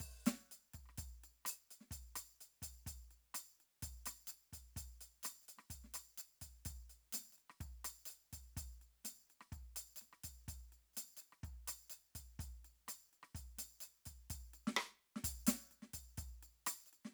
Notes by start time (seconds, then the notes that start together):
0.02 kick, percussion
0.26 snare, percussion
0.52 percussion
0.74 kick, percussion
0.86 cross-stick
0.89 cross-stick
0.98 kick, percussion
1.24 percussion
1.46 cross-stick, percussion
1.71 percussion
1.81 snare
1.91 kick, percussion
2.16 cross-stick, percussion
2.41 percussion
2.62 kick, percussion
2.87 kick, percussion
3.11 percussion
3.34 cross-stick, snare, percussion
3.61 percussion
3.83 kick, percussion
4.06 cross-stick, snare, percussion
4.27 percussion
4.32 percussion
4.53 kick, percussion
4.77 kick, percussion
5.01 percussion
5.23 cross-stick, snare, percussion
5.42 percussion
5.49 percussion
5.58 cross-stick, snare
5.70 kick, percussion
5.84 snare
5.94 cross-stick, percussion
6.18 percussion
6.42 kick, percussion
6.65 kick, percussion
6.90 percussion
7.13 snare, percussion
7.33 percussion
7.38 percussion
7.50 cross-stick, snare
7.61 kick, percussion
7.85 cross-stick, percussion
8.06 percussion
8.10 percussion
8.33 kick, percussion
8.57 kick, percussion
8.82 percussion
9.05 snare, percussion
9.30 percussion
9.40 cross-stick, snare
9.52 kick, percussion
9.76 cross-stick, percussion
9.96 percussion
10.02 snare, percussion
10.13 cross-stick
10.24 kick, percussion
10.48 kick, percussion
10.73 percussion
10.94 snare, percussion
10.97 percussion
11.17 percussion
11.22 percussion
11.33 cross-stick
11.44 kick, percussion
11.68 cross-stick, percussion
11.90 percussion
11.93 percussion
12.15 kick, percussion
12.39 kick, percussion
12.65 percussion
12.88 cross-stick, snare, percussion
13.13 percussion
13.23 cross-stick, snare
13.35 kick, percussion
13.58 snare, percussion
13.81 percussion
13.83 percussion
14.06 kick, percussion
14.30 kick, percussion
14.54 percussion
14.67 snare
14.77 high tom
15.16 snare
15.24 kick, percussion
15.30 kick
15.47 snare, percussion
15.71 percussion
15.83 snare
15.94 kick, percussion
16.18 kick, percussion
16.43 percussion
16.67 cross-stick, percussion
16.86 percussion
16.93 percussion
17.05 snare